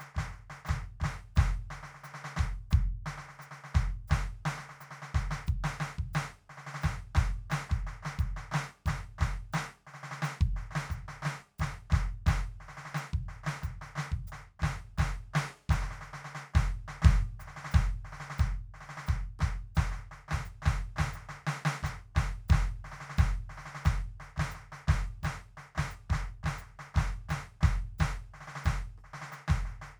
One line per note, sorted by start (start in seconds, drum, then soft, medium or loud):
0.01 snare soft
0.01 hi-hat pedal medium
0.16 kick medium
0.16 snare soft
0.19 snare medium
0.33 snare soft
0.51 snare soft
0.66 snare soft
0.66 hi-hat pedal medium
0.70 kick medium
0.70 snare medium
1.01 kick medium
1.01 snare soft
1.05 snare medium
1.37 kick loud
1.37 snare soft
1.37 hi-hat pedal medium
1.39 snare medium
1.72 snare soft
1.84 snare soft
1.96 snare soft
2.05 snare soft
2.05 hi-hat pedal medium
2.15 snare soft
2.26 snare medium
2.38 kick medium
2.38 snare medium
2.72 kick loud
2.72 snare soft
2.72 hi-hat pedal medium
3.07 snare medium
3.19 snare soft
3.30 snare soft
3.40 snare soft
3.40 hi-hat pedal medium
3.52 snare soft
3.65 snare soft
3.76 kick medium
3.76 snare medium
4.09 kick medium
4.09 snare soft
4.09 snare medium
4.09 hi-hat pedal medium
4.47 snare medium
4.59 snare soft
4.70 snare soft
4.82 snare soft
4.82 hi-hat pedal medium
4.92 snare soft
5.03 snare soft
5.16 kick medium
5.16 snare medium
5.32 snare medium
5.48 kick medium
5.48 hi-hat pedal medium
5.65 snare medium
5.81 snare medium
6.00 kick medium
6.14 snare loud
6.14 hi-hat pedal medium
6.51 snare soft
6.59 snare soft
6.68 snare medium
6.76 snare medium
6.83 kick medium
6.83 snare medium
6.83 hi-hat pedal medium
7.16 kick medium
7.16 snare medium
7.51 snare soft
7.51 hi-hat pedal medium
7.53 snare loud
7.71 kick medium
7.71 snare soft
7.88 snare soft
8.04 snare soft
8.06 snare medium
8.20 kick medium
8.20 snare soft
8.20 hi-hat pedal medium
8.38 snare soft
8.53 snare medium
8.55 snare loud
8.87 kick medium
8.87 snare soft
8.87 snare medium
8.87 hi-hat pedal medium
9.20 kick medium
9.20 snare soft
9.22 snare medium
9.54 snare loud
9.54 hi-hat pedal medium
9.57 snare medium
9.88 snare soft
9.95 snare soft
10.04 snare soft
10.12 snare medium
10.23 snare medium
10.23 hi-hat pedal medium
10.42 kick medium
10.58 snare soft
10.72 snare soft
10.77 snare medium
10.90 kick soft
10.90 snare soft
10.90 hi-hat pedal medium
11.09 snare soft
11.24 snare medium
11.26 snare medium
11.60 kick medium
11.60 snare soft
11.60 snare medium
11.60 hi-hat pedal medium
11.91 kick medium
11.91 snare soft
11.95 snare medium
12.27 kick medium
12.27 snare medium
12.27 hi-hat pedal medium
12.29 snare medium
12.62 snare soft
12.70 snare soft
12.78 snare soft
12.87 snare soft
12.96 snare medium
12.96 hi-hat pedal medium
13.14 kick medium
13.30 snare soft
13.45 snare soft
13.48 snare medium
13.63 kick soft
13.63 snare soft
13.63 hi-hat pedal medium
13.83 snare soft
13.97 snare soft
13.99 snare medium
14.13 kick medium
14.28 hi-hat pedal medium
14.33 snare soft
14.61 kick medium
14.61 snare soft
14.64 snare medium
14.99 kick medium
14.99 snare soft
14.99 hi-hat pedal medium
15.01 snare medium
15.35 snare soft
15.35 snare loud
15.71 kick medium
15.71 snare medium
15.71 hi-hat pedal medium
15.83 snare soft
15.92 snare soft
16.02 snare soft
16.15 snare medium
16.26 snare soft
16.36 snare medium
16.55 kick medium
16.55 snare soft
16.57 snare medium
16.89 snare medium
17.03 kick loud
17.03 snare medium
17.07 snare medium
17.41 snare soft
17.41 hi-hat pedal medium
17.49 snare soft
17.58 snare soft
17.66 snare medium
17.72 kick loud
17.72 snare medium
17.72 hi-hat pedal medium
18.06 snare soft
18.14 snare soft
18.21 snare medium
18.31 snare medium
18.39 kick medium
18.39 snare medium
18.39 hi-hat pedal medium
18.75 snare soft
18.82 snare soft
18.90 snare soft
18.99 snare medium
19.08 kick medium
19.08 snare medium
19.08 hi-hat pedal medium
19.40 kick medium
19.40 cross-stick soft
19.40 snare medium
19.76 kick medium
19.76 snare medium
19.76 hi-hat pedal medium
19.93 snare soft
20.12 snare soft
20.29 snare soft
20.32 kick medium
20.32 snare medium
20.46 hi-hat pedal medium
20.63 snare soft
20.67 kick medium
20.67 snare medium
20.97 snare soft
21.00 kick medium
21.00 snare loud
21.14 snare soft
21.14 hi-hat pedal medium
21.30 snare soft
21.48 snare medium
21.66 snare loud
21.84 kick soft
21.84 snare medium
21.84 hi-hat pedal medium
22.16 kick medium
22.16 snare soft
22.16 snare medium
22.50 kick loud
22.50 snare soft
22.50 hi-hat pedal medium
22.54 snare medium
22.86 snare soft
22.93 snare soft
23.02 snare soft
23.11 snare soft
23.19 kick loud
23.19 snare medium
23.19 hi-hat pedal medium
23.51 snare soft
23.59 snare soft
23.67 snare soft
23.76 snare medium
23.86 kick medium
23.86 snare medium
23.86 hi-hat pedal medium
24.21 snare soft
24.37 kick soft
24.37 snare soft
24.41 snare medium
24.52 snare soft
24.52 hi-hat pedal medium
24.73 snare soft
24.89 kick medium
24.89 snare soft
24.89 snare medium
25.24 kick soft
25.24 snare soft
25.24 snare medium
25.24 hi-hat pedal medium
25.58 snare soft
25.76 kick soft
25.76 snare soft
25.79 snare medium
25.92 hi-hat pedal medium
26.11 kick medium
26.11 snare soft
26.14 snare medium
26.44 kick soft
26.44 snare soft
26.47 snare medium
26.59 snare soft
26.59 hi-hat pedal medium
26.80 snare soft
26.96 kick medium
26.96 snare soft
26.99 snare medium
27.30 kick soft
27.30 snare soft
27.30 hi-hat pedal medium
27.32 snare medium
27.62 snare soft
27.64 kick medium
27.64 snare medium
28.00 kick medium
28.00 snare soft
28.00 snare loud
28.00 hi-hat pedal medium
28.35 snare soft
28.42 snare soft
28.49 snare soft
28.57 snare medium
28.65 kick medium
28.65 snare medium
28.65 hi-hat pedal medium
28.99 cross-stick soft
29.05 snare soft
29.15 snare soft
29.23 snare medium
29.33 snare soft
29.33 hi-hat pedal medium
29.49 kick medium
29.49 snare medium
29.66 snare soft
29.83 snare soft